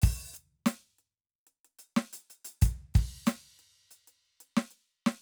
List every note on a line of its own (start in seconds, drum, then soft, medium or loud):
0.02 open hi-hat loud
0.02 kick loud
0.33 hi-hat pedal loud
0.66 closed hi-hat loud
0.66 snare loud
0.99 closed hi-hat soft
1.29 closed hi-hat soft
1.47 closed hi-hat soft
1.65 closed hi-hat soft
1.79 closed hi-hat medium
1.96 snare loud
2.13 closed hi-hat medium
2.30 closed hi-hat medium
2.45 closed hi-hat loud
2.61 open hi-hat loud
2.61 kick loud
2.94 kick loud
2.94 hi-hat pedal loud
2.94 crash medium
3.26 closed hi-hat loud
3.26 snare loud
3.59 closed hi-hat soft
3.91 closed hi-hat medium
4.07 closed hi-hat medium
4.25 closed hi-hat soft
4.40 closed hi-hat medium
4.57 snare loud
4.71 closed hi-hat medium
5.06 snare loud